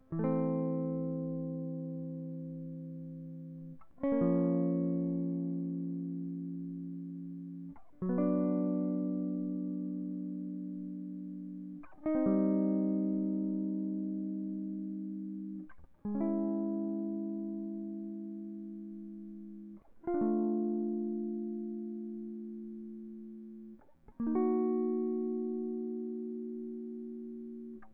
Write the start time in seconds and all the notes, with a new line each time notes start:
0.13 E3
0.20 A3
0.24 C4
4.04 C#4
4.13 A#3
4.22 F3
8.03 F#3
8.10 B3
8.19 D4
12.06 D#4
12.15 C4
12.27 G3
16.06 G#3
16.15 C#4
16.21 E4
20.08 F4
20.15 D4
20.22 A3
24.21 A#3
24.27 D#4
24.36 F#4